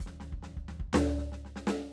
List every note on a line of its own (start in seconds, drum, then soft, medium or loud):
0.00 kick soft
0.00 hi-hat pedal medium
0.06 snare soft
0.06 floor tom medium
0.20 snare soft
0.20 floor tom soft
0.32 kick soft
0.42 snare soft
0.42 floor tom medium
0.57 kick soft
0.68 snare soft
0.68 floor tom medium
0.80 kick medium
0.93 snare loud
0.93 floor tom loud
1.07 snare soft
1.18 snare soft
1.32 snare soft
1.45 snare soft
1.56 snare medium
1.67 snare loud